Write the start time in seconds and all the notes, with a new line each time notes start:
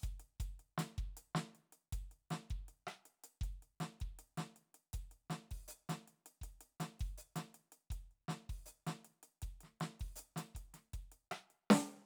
0.01 kick, snare, closed hi-hat, hi-hat pedal
0.20 closed hi-hat
0.40 kick, closed hi-hat
0.60 closed hi-hat
0.78 snare, closed hi-hat
0.99 kick, closed hi-hat
1.18 closed hi-hat
1.35 snare, closed hi-hat
1.55 closed hi-hat
1.73 closed hi-hat
1.93 kick, closed hi-hat
2.12 closed hi-hat
2.31 snare, closed hi-hat
2.51 kick, closed hi-hat
2.69 closed hi-hat
2.88 cross-stick, closed hi-hat
3.06 closed hi-hat
3.24 closed hi-hat
3.42 kick, closed hi-hat
3.63 closed hi-hat
3.81 snare, closed hi-hat
4.01 kick, closed hi-hat
4.20 closed hi-hat
4.38 snare, closed hi-hat
4.57 closed hi-hat
4.75 closed hi-hat
4.94 kick, closed hi-hat
5.12 closed hi-hat
5.30 snare, closed hi-hat
5.51 kick, open hi-hat
5.68 closed hi-hat, hi-hat pedal
5.90 snare, closed hi-hat
6.08 closed hi-hat
6.27 closed hi-hat
6.42 kick, closed hi-hat
6.61 closed hi-hat
6.81 snare, closed hi-hat
7.00 kick, open hi-hat
7.18 hi-hat pedal
7.36 snare, closed hi-hat
7.55 closed hi-hat
7.73 closed hi-hat
7.91 kick, closed hi-hat
8.12 closed hi-hat
8.29 snare, closed hi-hat
8.50 kick, open hi-hat
8.66 closed hi-hat, hi-hat pedal
8.87 snare, closed hi-hat
9.05 closed hi-hat
9.24 closed hi-hat
9.43 kick, closed hi-hat
9.61 snare, closed hi-hat
9.81 snare, closed hi-hat
10.00 kick, open hi-hat
10.16 closed hi-hat, hi-hat pedal
10.37 snare, closed hi-hat
10.55 kick, closed hi-hat
10.74 snare, closed hi-hat
10.94 kick, closed hi-hat
11.12 closed hi-hat
11.32 cross-stick, closed hi-hat
11.51 closed hi-hat
11.71 snare, open hi-hat
11.73 snare, open hi-hat